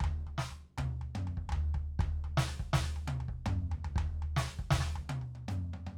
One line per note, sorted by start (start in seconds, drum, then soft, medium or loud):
0.01 kick medium
0.01 floor tom loud
0.04 floor tom loud
0.27 floor tom medium
0.39 snare medium
0.51 floor tom medium
0.78 floor tom loud
0.78 high tom loud
1.02 floor tom medium
1.16 mid tom loud
1.28 floor tom medium
1.38 kick medium
1.50 floor tom loud
1.53 floor tom loud
1.75 kick medium
1.75 floor tom medium
2.00 kick medium
2.00 floor tom loud
2.25 floor tom medium
2.38 snare loud
2.50 floor tom medium
2.60 kick medium
2.74 snare loud
2.74 floor tom loud
2.97 floor tom medium
3.08 high tom loud
3.21 floor tom medium
3.29 kick medium
3.47 floor tom loud
3.47 mid tom loud
3.72 floor tom medium
3.85 floor tom medium
3.97 kick medium
3.97 floor tom loud
4.23 floor tom medium
4.37 snare loud
4.49 floor tom medium
4.59 kick medium
4.71 snare loud
4.71 floor tom loud
4.81 snare medium
4.86 snare soft
4.96 floor tom medium
5.10 high tom loud
5.22 floor tom medium
5.36 high tom medium
5.49 hi-hat pedal soft
5.49 mid tom loud
5.74 mid tom medium
5.87 mid tom medium